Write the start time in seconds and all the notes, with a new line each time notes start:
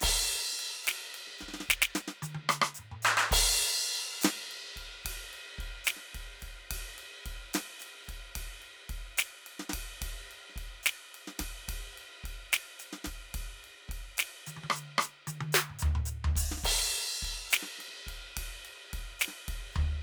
0.01 kick, snare, hi-hat pedal, crash
0.10 kick
0.15 kick
0.23 snare
0.33 ride
0.50 snare
0.53 snare
0.60 ride
0.84 snare, hi-hat pedal, ride
1.15 ride
1.28 snare
1.39 snare, hi-hat pedal
1.43 kick
1.49 snare
1.54 snare
1.61 snare
1.66 kick, hi-hat pedal
1.71 snare
1.82 snare
1.95 snare, hi-hat pedal
2.08 snare
2.23 hi-hat pedal, high tom
2.35 high tom
2.49 cross-stick, hi-hat pedal
2.62 cross-stick
2.75 hi-hat pedal
2.79 mid tom
2.92 mid tom
3.03 percussion, hi-hat pedal
3.18 percussion
3.28 percussion
3.32 kick, hi-hat pedal, crash
3.44 kick
3.96 ride
4.22 snare, hi-hat pedal, ride
4.52 snare, ride
4.77 kick, ride
5.03 kick, hi-hat pedal, ride
5.34 hi-hat pedal, ride
5.59 kick, ride
5.85 snare, hi-hat pedal, ride
5.97 snare
6.14 kick, snare, ride
6.40 kick, hi-hat pedal, ride
6.71 kick, ride
6.77 kick
6.99 ride
7.26 kick, ride
7.54 snare, hi-hat pedal, ride
7.80 snare, hi-hat pedal, ride
8.04 hi-hat pedal
8.09 kick, ride
8.36 kick, ride
8.42 kick
8.62 ride
8.90 kick, ride
9.18 snare, hi-hat pedal, ride
9.47 ride
9.60 snare
9.70 kick, snare, ride
10.02 kick, ride
10.31 ride
10.50 snare
10.56 kick, ride
10.84 snare, hi-hat pedal, ride
11.15 ride
11.28 snare
11.40 kick, snare, ride
11.68 kick, hi-hat pedal, ride
11.75 kick
11.98 ride
12.24 kick, ride
12.53 snare, hi-hat pedal, ride
12.80 hi-hat pedal, ride
12.93 snare
13.05 kick, snare, ride
13.35 kick, ride
13.41 kick
13.65 ride
13.89 kick, snare, ride
14.18 snare, hi-hat pedal, ride
14.47 hi-hat pedal, high tom
14.57 high tom
14.64 high tom
14.70 cross-stick
14.76 hi-hat pedal
14.99 cross-stick, hi-hat pedal
15.28 hi-hat pedal, high tom
15.41 open hi-hat, high tom
15.53 snare, hi-hat pedal
15.70 mid tom
15.79 floor tom, hi-hat pedal
15.96 mid tom
16.06 hi-hat pedal
16.25 floor tom
16.36 kick, hi-hat pedal
16.43 kick
16.52 snare
16.58 snare
16.64 kick, crash
16.71 kick
16.75 kick, snare
17.23 kick, ride
17.51 snare, hi-hat pedal, ride
17.63 snare
17.79 snare, ride
17.89 snare
17.94 snare
17.98 snare
18.00 snare
18.07 kick, ride
18.37 kick, ride
18.65 ride
18.94 kick, ride
19.00 kick
19.20 snare, hi-hat pedal, ride
19.28 snare
19.49 kick, ride
19.55 kick
19.73 kick, floor tom, hi-hat pedal